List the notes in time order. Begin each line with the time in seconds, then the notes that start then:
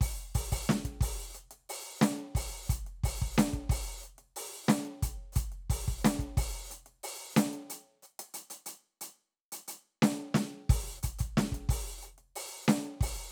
0.01 open hi-hat, kick
0.35 open hi-hat, kick
0.52 open hi-hat, kick
0.67 snare, hi-hat pedal
0.85 kick, closed hi-hat
1.01 open hi-hat, kick
1.34 closed hi-hat, hi-hat pedal
1.51 closed hi-hat
1.69 open hi-hat
1.99 closed hi-hat, snare, hi-hat pedal
2.19 closed hi-hat
2.35 open hi-hat, kick
2.67 closed hi-hat, kick, hi-hat pedal
2.87 closed hi-hat
3.04 open hi-hat, kick
3.22 kick
3.35 closed hi-hat, snare, hi-hat pedal
3.53 kick, closed hi-hat
3.70 open hi-hat, kick
4.02 closed hi-hat, hi-hat pedal
4.18 closed hi-hat
4.36 open hi-hat
4.67 closed hi-hat, snare, hi-hat pedal
4.85 closed hi-hat
5.03 open hi-hat, kick
5.33 closed hi-hat, kick, hi-hat pedal
5.52 closed hi-hat
5.70 open hi-hat, kick
5.88 kick
6.01 snare, hi-hat pedal
6.05 closed hi-hat
6.19 kick, closed hi-hat
6.37 open hi-hat, kick
6.69 closed hi-hat, hi-hat pedal
6.86 closed hi-hat
7.03 open hi-hat
7.34 closed hi-hat, snare, hi-hat pedal
7.53 closed hi-hat
7.70 open hi-hat
8.03 hi-hat pedal
8.19 closed hi-hat
8.34 closed hi-hat
8.50 closed hi-hat
8.66 closed hi-hat
9.01 closed hi-hat
9.52 closed hi-hat
9.68 closed hi-hat
10.02 snare
10.34 snare
10.70 open hi-hat, kick
10.97 hi-hat pedal
11.03 closed hi-hat, kick
11.19 closed hi-hat, kick
11.37 snare
11.52 kick, closed hi-hat
11.69 open hi-hat, kick
12.02 open hi-hat, hi-hat pedal
12.18 closed hi-hat
12.36 open hi-hat
12.65 closed hi-hat, snare, hi-hat pedal
12.84 cross-stick, closed hi-hat
13.01 open hi-hat, kick